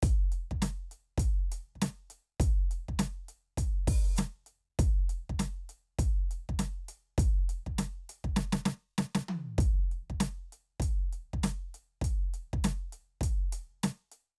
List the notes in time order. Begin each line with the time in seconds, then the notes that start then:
0.02 closed hi-hat, kick
0.32 closed hi-hat
0.51 kick
0.62 snare, closed hi-hat
0.91 closed hi-hat
1.18 kick, closed hi-hat
1.52 closed hi-hat
1.75 kick
1.81 snare, closed hi-hat
2.10 closed hi-hat
2.40 kick, closed hi-hat
2.71 closed hi-hat
2.88 kick
2.99 snare, closed hi-hat
3.28 closed hi-hat
3.57 kick, closed hi-hat
3.87 kick, open hi-hat
4.16 snare, closed hi-hat, hi-hat pedal
4.46 closed hi-hat
4.79 kick, closed hi-hat
5.09 closed hi-hat
5.29 kick
5.39 snare, closed hi-hat
5.69 closed hi-hat
5.99 kick, closed hi-hat
6.31 closed hi-hat
6.49 kick
6.59 snare, closed hi-hat
6.88 closed hi-hat
7.18 kick, closed hi-hat
7.49 closed hi-hat
7.66 kick
7.78 snare, closed hi-hat
8.09 closed hi-hat
8.24 kick
8.36 snare
8.52 snare
8.65 snare
8.98 snare
9.15 snare
9.28 high tom
9.58 kick, closed hi-hat
9.91 closed hi-hat
10.10 kick
10.20 snare, closed hi-hat
10.52 closed hi-hat
10.80 kick, closed hi-hat
11.12 closed hi-hat
11.33 kick
11.43 closed hi-hat, snare
11.74 closed hi-hat
12.01 kick, closed hi-hat
12.34 closed hi-hat
12.53 kick
12.64 snare, closed hi-hat
12.92 closed hi-hat
13.21 kick, closed hi-hat
13.52 closed hi-hat
13.83 snare, closed hi-hat
14.12 closed hi-hat